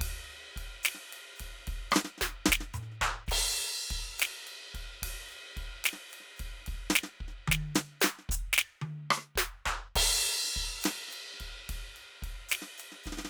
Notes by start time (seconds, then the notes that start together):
0.01 kick, ride
0.07 kick
0.31 ride
0.37 snare
0.41 snare
0.44 snare
0.46 snare
0.57 kick, ride
0.84 snare, hi-hat pedal, ride
0.95 snare
1.09 hi-hat pedal, ride
1.36 hi-hat pedal, ride
1.41 kick
1.68 kick, ride
1.75 kick
1.91 cross-stick, hi-hat pedal
1.96 snare
2.05 snare
2.18 snare
2.22 kick, snare
2.26 snare
2.29 snare
2.46 kick, snare
2.52 snare
2.61 snare
2.74 hi-hat pedal, mid tom
2.83 snare
2.92 snare
3.02 kick, percussion
3.07 kick
3.27 kick, snare, hi-hat pedal
3.31 crash
3.36 kick
3.90 kick, snare, ride
3.97 kick
4.19 snare, hi-hat pedal, ride
4.47 ride
4.75 kick, ride
5.03 kick, ride
5.08 kick
5.29 hi-hat pedal, ride
5.57 kick, ride
5.85 snare, hi-hat pedal, ride
5.93 snare
6.10 hi-hat pedal, ride
6.21 snare
6.37 kick, hi-hat pedal, ride
6.62 snare
6.67 kick, ride
6.75 kick
6.90 snare, hi-hat pedal
6.96 snare
7.04 snare
7.21 kick
7.28 snare
7.48 kick, snare, high tom
7.55 kick
7.75 snare, hi-hat pedal
8.01 snare, hi-hat pedal
8.05 snare
8.19 snare
8.30 kick, hi-hat pedal
8.37 kick
8.53 snare
8.58 snare
8.82 high tom
9.11 cross-stick
9.18 cross-stick
9.36 kick, snare, high tom
9.66 kick, percussion
9.96 kick, crash
10.07 kick
10.45 snare
10.48 snare
10.54 kick, ride
10.62 kick
10.82 hi-hat pedal, ride
10.86 snare
11.09 snare, hi-hat pedal
11.13 ride
11.34 snare
11.40 kick, ride
11.70 kick, ride
11.76 kick
11.96 hi-hat pedal, ride
12.23 kick, ride
12.49 snare, hi-hat pedal, ride
12.62 snare
12.78 hi-hat pedal, ride
12.92 snare
13.04 kick, snare, hi-hat pedal
13.13 snare
13.18 snare
13.25 snare